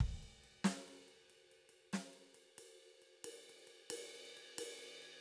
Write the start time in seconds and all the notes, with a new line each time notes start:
0.00 kick, ride
0.23 ride
0.44 ride
0.64 snare, ride
0.88 ride
1.08 ride
1.30 ride
1.51 ride
1.69 ride
1.93 snare, ride
2.13 ride
2.34 ride
2.58 ride
2.80 ride
3.02 ride
3.24 ride
3.49 ride
3.59 ride
3.67 ride
3.90 ride
4.15 ride
4.25 ride
4.37 ride
4.58 ride
4.79 ride
5.02 ride